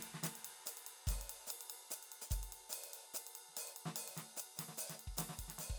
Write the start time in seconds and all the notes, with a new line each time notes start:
0.01 hi-hat pedal, ride
0.15 snare
0.23 snare, hi-hat pedal, ride
0.36 ride
0.43 hi-hat pedal, ride
0.66 hi-hat pedal, ride
0.78 ride
0.87 ride
1.07 kick, snare, hi-hat pedal, ride
1.22 ride
1.30 ride
1.47 hi-hat pedal, ride
1.61 ride
1.70 ride
1.91 hi-hat pedal, ride
2.03 ride
2.12 ride
2.22 open hi-hat
2.31 kick, hi-hat pedal, ride
2.44 ride
2.53 ride
2.70 hi-hat pedal, ride
2.84 ride
2.94 ride
3.14 hi-hat pedal, ride
3.27 ride
3.36 ride
3.49 snare
3.57 hi-hat pedal, ride
3.68 ride
3.77 ride
3.86 snare
3.96 hi-hat pedal, ride
4.08 ride
4.16 snare, hi-hat pedal, ride
4.37 hi-hat pedal, ride
4.57 snare, hi-hat pedal, ride
4.69 snare
4.78 hi-hat pedal, ride
4.90 snare, ride
4.96 hi-hat pedal
5.00 ride
5.08 kick
5.18 snare, hi-hat pedal, ride
5.30 snare
5.37 kick, hi-hat pedal, ride
5.49 snare, ride
5.59 snare, hi-hat pedal, ride
5.70 kick